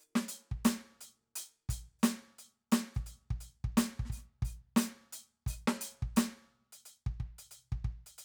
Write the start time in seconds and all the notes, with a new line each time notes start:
0.00 hi-hat pedal
0.15 snare
0.28 closed hi-hat
0.51 kick
0.65 closed hi-hat, snare
1.01 closed hi-hat
1.36 closed hi-hat
1.69 closed hi-hat, kick
1.99 hi-hat pedal
2.03 closed hi-hat, snare
2.39 closed hi-hat
2.72 closed hi-hat, snare
2.95 kick, hi-hat pedal
3.06 closed hi-hat
3.30 kick
3.41 closed hi-hat
3.64 kick
3.77 closed hi-hat, snare
3.99 kick
4.05 snare
4.10 open hi-hat, kick
4.17 snare
4.42 open hi-hat, kick, hi-hat pedal
4.76 open hi-hat, snare, hi-hat pedal
5.13 closed hi-hat
5.46 open hi-hat, kick
5.51 hi-hat pedal
5.68 snare
5.81 closed hi-hat
6.02 kick
6.16 closed hi-hat, snare
6.72 closed hi-hat
6.85 closed hi-hat
7.06 kick
7.20 kick
7.38 closed hi-hat
7.51 closed hi-hat
7.72 kick
7.84 kick
8.06 closed hi-hat
8.18 closed hi-hat